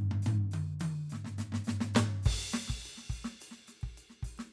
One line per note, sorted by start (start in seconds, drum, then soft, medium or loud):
0.12 floor tom loud
0.23 hi-hat pedal medium
0.27 floor tom loud
0.52 hi-hat pedal soft
0.52 high tom loud
0.80 hi-hat pedal medium
0.80 high tom loud
1.10 floor tom medium
1.10 hi-hat pedal medium
1.14 snare soft
1.25 snare soft
1.25 floor tom medium
1.39 snare soft
1.39 floor tom medium
1.39 hi-hat pedal medium
1.53 snare medium
1.53 floor tom medium
1.65 snare medium
1.65 floor tom medium
1.65 hi-hat pedal medium
1.81 snare medium
1.81 floor tom medium
1.95 snare loud
1.95 hi-hat pedal medium
1.95 floor tom loud
2.24 kick medium
2.24 hi-hat pedal medium
2.24 crash loud
2.24 ride loud
2.52 snare medium
2.52 hi-hat pedal medium
2.69 kick medium
2.69 snare soft
2.82 hi-hat pedal soft
2.86 ride bell medium
2.98 snare soft
3.10 kick soft
3.10 hi-hat pedal medium
3.10 ride soft
3.25 snare medium
3.25 ride soft
3.41 hi-hat pedal medium
3.41 ride bell medium
3.52 snare soft
3.68 snare soft
3.68 hi-hat pedal medium
3.68 ride soft
3.82 kick soft
3.82 ride soft
3.98 hi-hat pedal soft
3.98 ride bell medium
4.10 snare soft
4.23 kick soft
4.23 hi-hat pedal medium
4.23 ride soft
4.39 snare medium
4.39 ride soft